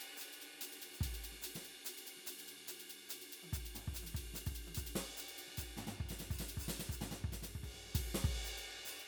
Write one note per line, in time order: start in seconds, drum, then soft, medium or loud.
0.01 ride medium
0.18 hi-hat pedal medium
0.22 ride medium
0.33 ride medium
0.42 ride medium
0.54 snare soft
0.62 hi-hat pedal medium
0.62 ride loud
0.73 ride medium
0.82 ride medium
0.94 open hi-hat medium
1.01 kick soft
1.01 ride loud
1.15 ride medium
1.24 ride medium
1.33 snare soft
1.42 hi-hat pedal medium
1.42 ride loud
1.55 snare soft
1.55 ride medium
1.65 ride medium
1.85 hi-hat pedal medium
1.85 ride loud
1.98 ride medium
2.06 hi-hat pedal soft
2.06 ride medium
2.18 snare soft
2.27 hi-hat pedal medium
2.27 ride loud
2.39 ride medium
2.48 ride medium
2.58 snare soft
2.68 hi-hat pedal medium
2.68 ride medium
2.80 ride medium
2.90 ride medium
3.10 hi-hat pedal medium
3.10 ride loud
3.22 ride medium
3.33 ride medium
3.43 high tom soft
3.53 kick soft
3.53 hi-hat pedal loud
3.53 ride medium
3.66 ride medium
3.72 floor tom medium
3.72 hi-hat pedal soft
3.72 ride medium
3.88 kick soft
3.95 hi-hat pedal medium
3.95 ride medium
4.03 high tom soft
4.07 ride medium
4.14 kick soft
4.14 hi-hat pedal soft
4.14 ride medium
4.34 snare soft
4.34 hi-hat pedal medium
4.34 ride medium
4.47 kick soft
4.47 ride medium
4.56 ride medium
4.67 high tom soft
4.75 kick soft
4.75 hi-hat pedal medium
4.75 ride medium
4.87 ride medium
4.96 snare medium
4.96 ride medium
5.17 hi-hat pedal medium
5.17 ride medium
5.29 ride medium
5.39 ride medium
5.48 snare soft
5.58 kick soft
5.58 hi-hat pedal medium
5.58 ride medium
5.77 snare soft
5.77 floor tom medium
5.87 snare soft
5.87 floor tom medium
6.01 kick soft
6.09 snare soft
6.09 ride medium
6.20 snare soft
6.20 ride medium
6.31 kick soft
6.31 hi-hat pedal medium
6.39 snare medium
6.39 ride medium
6.49 ride medium
6.58 kick soft
6.58 hi-hat pedal medium
6.69 snare medium
6.69 ride medium
6.80 snare medium
6.80 ride medium
6.90 kick soft
6.90 hi-hat pedal medium
7.02 snare medium
7.02 floor tom medium
7.12 snare medium
7.12 floor tom medium
7.25 kick soft
7.33 snare soft
7.33 ride medium
7.43 snare soft
7.43 ride medium
7.56 kick soft
7.64 kick soft
7.64 ride medium
7.75 snare soft
7.87 snare soft
7.95 kick medium
7.95 ride loud
8.05 ride soft
8.15 snare medium
8.25 kick medium
8.25 ride medium
8.41 snare soft
8.45 hi-hat pedal medium
8.45 ride medium
8.58 ride medium
8.79 snare soft
8.86 hi-hat pedal medium
8.86 ride medium
9.00 ride medium